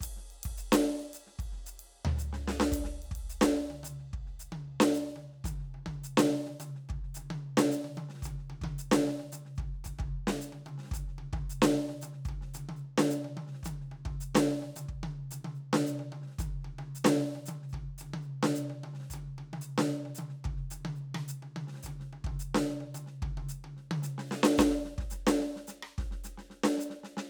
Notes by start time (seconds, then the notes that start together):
0.01 kick, hi-hat pedal, ride
0.16 snare
0.30 ride
0.43 kick, ride
0.58 hi-hat pedal
0.72 snare, ride
0.85 snare
1.00 ride
1.14 hi-hat pedal, ride
1.27 snare
1.39 kick, ride
1.52 snare
1.56 snare
1.66 hi-hat pedal, ride
1.79 ride
2.05 floor tom
2.16 snare, hi-hat pedal
2.33 snare
2.48 snare
2.60 snare
2.72 kick, hi-hat pedal, ride
2.84 snare
3.02 snare, ride
3.11 kick
3.15 ride
3.30 hi-hat pedal
3.41 snare
3.54 snare
3.56 snare
3.70 high tom
3.83 hi-hat pedal, high tom
3.99 snare
4.13 kick
4.26 snare
4.40 hi-hat pedal
4.52 high tom
4.80 snare
4.94 hi-hat pedal
5.16 high tom
5.33 snare
5.44 kick, hi-hat pedal, high tom
5.59 snare
5.62 snare
5.74 high tom
5.86 kick, high tom
6.04 hi-hat pedal
6.17 snare, high tom
6.31 snare
6.47 high tom
6.60 hi-hat pedal, high tom
6.75 snare
6.89 kick, high tom
7.03 snare
7.15 hi-hat pedal, high tom
7.30 high tom
7.57 snare, high tom
7.72 hi-hat pedal
7.84 high tom
7.95 hi-hat pedal, high tom
8.09 snare
8.14 snare
8.18 snare
8.21 kick, snare, hi-hat pedal
8.26 high tom
8.38 snare
8.50 high tom
8.62 kick, high tom
8.78 hi-hat pedal
8.92 snare, high tom
9.07 snare
9.20 high tom
9.32 hi-hat pedal, high tom
9.45 snare
9.56 kick, hi-hat pedal
9.60 high tom
9.73 snare
9.84 kick, hi-hat pedal, high tom
9.99 kick, high tom
10.27 snare, high tom
10.41 hi-hat pedal
10.53 high tom
10.66 hi-hat pedal, high tom
10.78 snare
10.82 snare
10.85 snare
10.87 snare
10.91 kick, hi-hat pedal, high tom
11.08 snare
11.18 high tom
11.33 kick, high tom
11.50 hi-hat pedal
11.62 snare, high tom
11.79 snare
11.89 high tom
12.02 hi-hat pedal, high tom
12.13 snare
12.25 kick, hi-hat pedal, high tom
12.41 snare
12.46 snare
12.54 hi-hat pedal, high tom
12.69 high tom
12.76 hi-hat pedal
12.98 snare, high tom
13.10 hi-hat pedal
13.25 high tom
13.37 high tom
13.47 snare
13.51 snare
13.54 snare
13.63 kick, hi-hat pedal, high tom
13.81 snare
13.92 high tom
14.05 kick, high tom
14.21 hi-hat pedal
14.35 snare, high tom
14.51 snare
14.56 snare
14.62 high tom
14.76 hi-hat pedal, high tom
14.89 kick
15.03 high tom
15.31 hi-hat pedal, high tom
15.45 high tom
15.55 hi-hat pedal
15.73 snare, high tom
15.87 hi-hat pedal
15.99 high tom
16.12 high tom
16.22 snare
16.26 snare
16.31 snare
16.39 kick, hi-hat pedal, high tom
16.60 snare
16.62 snare, high tom
16.79 high tom
16.95 hi-hat pedal
17.05 snare, high tom
17.35 high tom
17.46 hi-hat pedal, high tom
17.62 snare
17.69 kick, hi-hat pedal
17.74 high tom
17.98 hi-hat pedal, high tom
18.14 high tom
18.22 hi-hat pedal
18.43 snare, high tom
18.55 hi-hat pedal
18.70 high tom
18.84 high tom
18.94 snare
18.99 snare
19.02 snare
19.07 kick, snare, hi-hat pedal
19.14 high tom
19.26 snare
19.38 high tom
19.53 high tom
19.61 hi-hat pedal
19.78 snare, high tom
20.05 high tom
20.15 hi-hat pedal, high tom
20.29 snare
20.44 kick, high tom
20.57 snare
20.71 hi-hat pedal, high tom
20.85 high tom
20.95 hi-hat pedal
21.15 cross-stick, high tom
21.28 hi-hat pedal
21.43 high tom
21.56 high tom
21.67 snare
21.72 snare
21.75 snare
21.77 snare
21.83 kick, hi-hat pedal, high tom
22.00 snare
22.13 high tom
22.24 kick, high tom
22.39 hi-hat pedal
22.55 snare, high tom
22.69 snare
22.81 high tom
22.95 hi-hat pedal, high tom
23.06 snare
23.22 kick, high tom
23.37 high tom
23.49 snare, hi-hat pedal
23.64 high tom
23.77 snare
23.91 high tom
24.02 snare, hi-hat pedal
24.18 snare
24.27 snare, hi-hat pedal
24.43 snare
24.58 kick, snare, hi-hat pedal
24.71 snare
24.85 snare
24.98 kick, snare
25.10 snare, hi-hat pedal
25.27 snare
25.40 snare
25.56 snare
25.67 snare, hi-hat pedal
25.83 cross-stick
25.98 kick, snare
26.11 snare
26.24 snare, hi-hat pedal
26.38 snare
26.50 snare
26.64 snare
26.78 snare, hi-hat pedal
26.90 snare
27.04 snare
27.17 snare